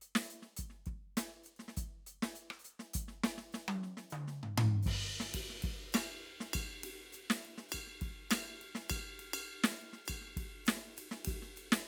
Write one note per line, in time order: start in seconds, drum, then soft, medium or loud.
0.01 closed hi-hat soft
0.15 snare loud
0.23 hi-hat pedal medium
0.30 closed hi-hat soft
0.42 snare soft
0.49 snare soft
0.57 closed hi-hat medium
0.57 kick soft
0.70 snare soft
0.75 snare soft
0.86 kick soft
0.86 closed hi-hat soft
1.17 closed hi-hat medium
1.17 snare medium
1.44 closed hi-hat soft
1.44 hi-hat pedal soft
1.59 snare soft
1.68 snare soft
1.77 closed hi-hat medium
1.77 kick soft
1.86 kick soft
2.07 closed hi-hat medium
2.23 snare medium
2.35 closed hi-hat soft
2.50 cross-stick medium
2.59 hi-hat pedal soft
2.65 closed hi-hat soft
2.79 snare soft
2.94 closed hi-hat medium
2.94 kick soft
3.08 snare soft
3.24 snare loud
3.38 snare soft
3.52 snare medium
3.52 hi-hat pedal soft
3.68 high tom loud
3.83 snare soft
3.97 snare soft
4.10 hi-hat pedal medium
4.10 mid tom medium
4.28 snare soft
4.43 floor tom medium
4.58 floor tom loud
4.83 kick medium
4.83 hi-hat pedal medium
4.87 crash loud
4.93 kick soft
4.97 kick soft
5.08 kick soft
5.20 snare medium
5.34 kick soft
5.34 ride loud
5.50 snare soft
5.55 snare soft
5.62 kick medium
5.62 snare soft
5.62 ride medium
5.74 kick soft
5.92 snare loud
5.92 hi-hat pedal medium
5.92 ride bell loud
6.22 hi-hat pedal soft
6.22 ride soft
6.40 snare medium
6.53 kick soft
6.53 snare soft
6.53 hi-hat pedal soft
6.53 ride bell loud
6.64 kick soft
6.70 snare soft
6.84 ride loud
7.12 hi-hat pedal medium
7.12 ride medium
7.30 snare loud
7.45 ride soft
7.58 snare soft
7.69 hi-hat pedal medium
7.69 ride bell loud
7.74 kick soft
7.87 snare soft
7.92 snare soft
8.01 kick soft
8.01 ride medium
8.11 kick soft
8.30 snare loud
8.30 hi-hat pedal medium
8.30 ride bell loud
8.45 snare soft
8.62 ride soft
8.75 snare medium
8.89 kick soft
8.89 hi-hat pedal medium
8.89 ride bell loud
8.99 snare soft
9.04 snare soft
9.07 snare soft
9.19 ride medium
9.34 ride bell loud
9.43 hi-hat pedal soft
9.48 ride soft
9.64 snare loud
9.71 snare soft
9.71 hi-hat pedal soft
9.82 ride soft
9.93 snare soft
10.05 hi-hat pedal medium
10.05 ride bell loud
10.10 kick soft
10.21 snare soft
10.27 snare soft
10.32 snare soft
10.37 kick soft
10.37 ride medium
10.65 snare loud
10.65 hi-hat pedal medium
10.65 ride medium
10.77 snare soft
10.97 hi-hat pedal medium
10.97 ride medium
11.11 snare medium
11.25 kick soft
11.25 hi-hat pedal medium
11.25 ride loud
11.33 kick soft
11.37 kick soft
11.42 snare soft
11.56 hi-hat pedal medium
11.56 ride medium
11.72 snare loud